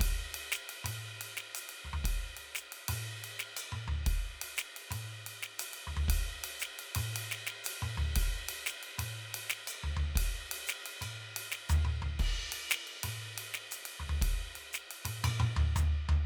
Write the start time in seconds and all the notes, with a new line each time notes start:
0.01 kick, ride
0.35 ride
0.52 snare, hi-hat pedal
0.70 ride
0.85 mid tom, ride
1.22 ride
1.38 snare
1.55 hi-hat pedal, ride
1.70 ride
1.85 floor tom
1.94 floor tom
2.05 kick, ride
2.37 ride
2.56 snare, hi-hat pedal
2.73 ride
2.89 mid tom, ride
3.24 ride
3.40 snare
3.57 hi-hat pedal, ride bell
3.73 mid tom
3.88 floor tom
4.07 kick, ride
4.42 ride
4.57 snare, hi-hat pedal
4.77 ride
4.91 mid tom, ride
5.27 ride
5.43 snare
5.60 hi-hat pedal, ride
5.74 ride
5.88 floor tom
5.97 floor tom
6.09 kick, ride
6.44 ride
6.60 snare, hi-hat pedal
6.80 ride
6.96 mid tom, ride
7.16 ride
7.32 snare
7.47 snare
7.65 hi-hat pedal, ride
7.83 mid tom
7.98 floor tom
8.16 kick, ride
8.49 ride
8.67 snare, hi-hat pedal
8.83 ride
8.99 mid tom, ride
9.35 ride
9.50 snare
9.68 hi-hat pedal, ride bell
9.84 floor tom
9.97 floor tom
10.16 kick, ride
10.52 ride
10.68 snare, hi-hat pedal
10.86 ride
11.02 mid tom, ride bell
11.37 ride
11.52 snare
11.70 floor tom, hi-hat pedal
11.85 mid tom
12.03 floor tom
12.20 kick, ride
12.53 ride
12.70 snare, hi-hat pedal
12.88 ride
13.04 mid tom, ride
13.38 ride
13.55 snare
13.72 hi-hat pedal, ride
13.86 ride
14.00 kick, floor tom
14.10 floor tom
14.22 kick, ride
14.56 ride
14.74 snare, hi-hat pedal
14.91 ride
15.05 mid tom, ride
15.25 mid tom, ride bell
15.40 mid tom
15.57 floor tom
15.76 floor tom, hi-hat pedal
16.09 floor tom